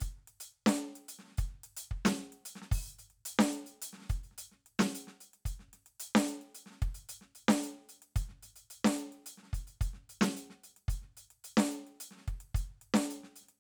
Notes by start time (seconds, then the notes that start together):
0.01 closed hi-hat, kick
0.17 snare
0.28 closed hi-hat
0.41 closed hi-hat
0.67 closed hi-hat, snare
0.81 snare
0.96 closed hi-hat
1.09 closed hi-hat
1.19 snare
1.24 snare
1.28 snare
1.31 snare
1.38 closed hi-hat, kick
1.48 snare
1.51 snare
1.54 snare
1.64 closed hi-hat
1.77 closed hi-hat
1.91 kick
2.06 closed hi-hat, snare
2.14 snare
2.20 snare
2.23 snare
2.33 closed hi-hat
2.46 closed hi-hat
2.56 snare
2.62 cross-stick, snare
2.72 open hi-hat, kick
2.99 closed hi-hat
3.11 closed hi-hat
3.26 closed hi-hat
3.39 snare
3.54 closed hi-hat
3.67 closed hi-hat
3.82 closed hi-hat
3.93 snare
3.98 snare
4.02 snare
4.05 snare
4.10 closed hi-hat, kick, snare
4.16 snare
4.24 closed hi-hat
4.32 snare
4.38 closed hi-hat
4.52 snare
4.67 closed hi-hat
4.79 closed hi-hat, snare
4.95 closed hi-hat
5.08 snare
5.12 snare
5.21 closed hi-hat
5.34 closed hi-hat
5.46 closed hi-hat, kick
5.60 snare
5.69 kick
5.74 snare, closed hi-hat
5.87 closed hi-hat
6.00 closed hi-hat
6.16 snare
6.28 closed hi-hat
6.42 closed hi-hat
6.55 closed hi-hat
6.66 snare
6.71 snare
6.77 snare
6.80 kick, snare, closed hi-hat
6.87 snare
6.95 closed hi-hat
7.09 closed hi-hat
7.22 snare
7.35 closed hi-hat
7.49 closed hi-hat, snare
7.64 closed hi-hat
7.89 closed hi-hat
8.02 closed hi-hat
8.16 closed hi-hat, kick
8.29 snare
8.43 closed hi-hat, snare
8.56 closed hi-hat
8.71 closed hi-hat
8.85 snare
8.98 closed hi-hat
9.13 closed hi-hat
9.26 closed hi-hat
9.38 snare
9.43 snare
9.48 snare
9.53 closed hi-hat, kick, snare
9.58 snare
9.68 closed hi-hat
9.81 closed hi-hat, kick
9.94 snare
10.10 closed hi-hat
10.22 closed hi-hat, snare
10.35 closed hi-hat, snare
10.50 snare
10.64 closed hi-hat
10.77 closed hi-hat
10.89 closed hi-hat, kick
11.02 snare
11.17 closed hi-hat
11.31 closed hi-hat
11.45 closed hi-hat
11.58 snare
11.71 closed hi-hat
11.87 closed hi-hat
12.01 closed hi-hat
12.11 snare
12.15 snare
12.17 snare
12.21 snare
12.28 kick, closed hi-hat
12.41 closed hi-hat
12.55 closed hi-hat, kick
12.82 closed hi-hat
12.94 snare, closed hi-hat
13.11 closed hi-hat
13.24 snare
13.29 snare
13.34 closed hi-hat, snare
13.37 snare
13.41 snare
13.47 snare, closed hi-hat